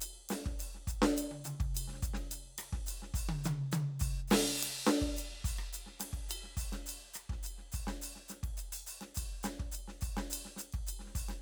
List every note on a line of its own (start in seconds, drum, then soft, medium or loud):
0.01 hi-hat pedal medium
0.01 ride bell medium
0.29 snare medium
0.29 hi-hat pedal medium
0.29 ride medium
0.45 kick soft
0.45 snare soft
0.59 hi-hat pedal medium
0.59 ride medium
0.75 snare soft
0.87 kick soft
0.87 hi-hat pedal medium
0.87 ride soft
1.02 snare loud
1.17 hi-hat pedal medium
1.17 ride bell medium
1.31 high tom medium
1.45 hi-hat pedal medium
1.45 high tom medium
1.45 ride soft
1.60 kick medium
1.60 ride soft
1.75 hi-hat pedal medium
1.75 ride bell loud
1.88 snare soft
1.92 snare soft
1.95 snare soft
2.03 kick medium
2.03 hi-hat pedal medium
2.03 ride soft
2.14 snare medium
2.14 ride soft
2.31 hi-hat pedal medium
2.31 ride bell medium
2.58 cross-stick medium
2.58 hi-hat pedal medium
2.58 ride medium
2.73 kick soft
2.73 snare soft
2.87 hi-hat pedal medium
2.87 ride bell medium
3.02 snare soft
3.14 kick medium
3.14 hi-hat pedal medium
3.14 ride bell soft
3.29 high tom medium
3.44 hi-hat pedal medium
3.44 high tom loud
3.72 hi-hat pedal medium
3.72 high tom loud
4.00 kick medium
4.00 hi-hat pedal medium
4.28 snare loud
4.28 hi-hat pedal soft
4.28 crash loud
4.58 hi-hat pedal medium
4.63 ride loud
4.86 snare loud
4.86 hi-hat pedal medium
5.02 kick soft
5.02 snare soft
5.17 hi-hat pedal medium
5.17 ride bell medium
5.32 snare soft
5.45 kick medium
5.45 hi-hat pedal medium
5.45 ride soft
5.58 cross-stick medium
5.58 ride soft
5.73 hi-hat pedal medium
5.73 ride bell medium
5.87 snare soft
6.00 snare soft
6.00 hi-hat pedal medium
6.00 ride loud
6.13 kick soft
6.13 ride soft
6.29 hi-hat pedal medium
6.29 ride bell loud
6.44 snare soft
6.57 kick soft
6.57 hi-hat pedal medium
6.57 ride soft
6.72 snare soft
6.72 ride soft
6.86 hi-hat pedal medium
6.86 ride bell medium
7.14 cross-stick medium
7.14 hi-hat pedal medium
7.14 ride bell soft
7.30 kick soft
7.30 snare soft
7.43 hi-hat pedal medium
7.43 ride bell medium
7.58 snare soft
7.72 kick soft
7.72 hi-hat pedal medium
7.72 ride bell soft
7.87 snare medium
7.87 ride soft
8.02 hi-hat pedal medium
8.02 ride bell medium
8.16 snare soft
8.29 snare soft
8.29 hi-hat pedal medium
8.29 ride soft
8.43 kick soft
8.43 ride soft
8.57 hi-hat pedal medium
8.57 ride bell soft
8.72 open hi-hat loud
8.87 hi-hat pedal medium
8.87 ride bell soft
9.01 snare soft
9.01 ride soft
9.15 kick soft
9.15 hi-hat pedal medium
9.15 ride bell medium
9.43 snare medium
9.43 hi-hat pedal medium
9.43 ride soft
9.59 kick soft
9.59 snare soft
9.72 hi-hat pedal medium
9.72 ride bell medium
9.88 snare soft
10.01 kick soft
10.01 hi-hat pedal medium
10.01 ride soft
10.17 snare medium
10.17 ride soft
10.30 hi-hat pedal medium
10.30 ride bell loud
10.45 snare soft
10.57 snare soft
10.57 hi-hat pedal loud
10.57 ride soft
10.73 kick soft
10.73 ride soft
10.87 hi-hat pedal medium
10.87 ride bell medium
11.00 snare soft
11.04 snare soft
11.06 snare soft
11.09 snare soft
11.15 kick soft
11.15 hi-hat pedal medium
11.15 ride soft
11.29 snare soft
11.29 ride soft